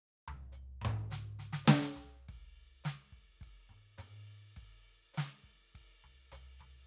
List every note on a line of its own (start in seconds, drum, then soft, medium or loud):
0.28 floor tom medium
0.52 hi-hat pedal soft
0.81 high tom medium
0.85 high tom loud
1.10 snare medium
1.10 hi-hat pedal soft
1.39 snare soft
1.53 snare medium
1.65 snare loud
1.65 hi-hat pedal medium
1.82 snare medium
1.96 floor tom soft
2.28 kick soft
2.28 ride medium
2.84 snare medium
2.84 hi-hat pedal medium
2.84 ride soft
3.12 kick soft
3.41 kick soft
3.41 ride soft
3.69 high tom soft
3.98 hi-hat pedal medium
3.98 high tom medium
3.98 ride medium
4.56 kick soft
4.56 ride medium
5.14 snare medium
5.14 hi-hat pedal medium
5.19 ride medium
5.44 kick soft
5.75 kick soft
5.75 ride medium
6.04 floor tom soft
6.32 floor tom soft
6.32 hi-hat pedal medium
6.32 ride medium
6.60 floor tom soft
6.60 ride soft